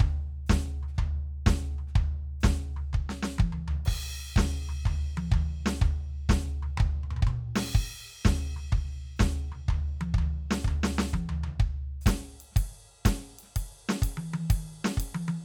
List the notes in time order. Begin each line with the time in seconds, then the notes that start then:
0.01 kick, floor tom
0.47 kick, snare, floor tom, hi-hat pedal
0.84 floor tom
0.89 snare
0.94 snare
0.99 kick, floor tom
1.47 kick, snare, floor tom
1.72 snare
1.79 floor tom
1.88 snare
1.94 kick, snare, floor tom
2.41 kick, snare, floor tom, hi-hat pedal
2.77 floor tom
2.94 kick, floor tom
3.10 snare
3.23 snare
3.39 kick, high tom
3.53 floor tom
3.69 floor tom
3.86 kick, crash
4.35 kick, snare, floor tom, hi-hat pedal
4.70 floor tom
4.86 kick, floor tom
5.18 high tom
5.32 kick, floor tom
5.67 snare
5.82 kick, floor tom
6.30 kick, snare, floor tom
6.63 floor tom
6.78 kick, floor tom
7.04 mid tom
7.11 mid tom
7.17 mid tom
7.23 kick
7.28 mid tom
7.56 snare, crash
7.76 kick
8.26 kick, snare, floor tom
8.57 floor tom
8.73 kick, floor tom
9.17 kick, snare, floor tom, hi-hat pedal
9.53 floor tom
9.69 kick, floor tom
10.02 high tom
10.15 kick
10.19 floor tom
10.52 snare
10.61 hi-hat pedal
10.65 kick, floor tom
10.84 snare
10.99 snare
11.09 hi-hat pedal
11.14 kick, high tom
11.30 floor tom
11.44 floor tom
11.61 kick
12.02 hi-hat pedal
12.07 kick, snare, ride
12.41 ride
12.53 snare
12.57 kick, snare, ride
13.06 kick, snare, ride
13.40 ride
13.44 snare
13.47 snare
13.57 kick, ride
13.90 snare
14.03 kick, ride
14.18 high tom
14.34 high tom
14.51 kick, ride
14.85 snare
14.92 hi-hat pedal
14.98 kick, ride
15.15 high tom
15.29 high tom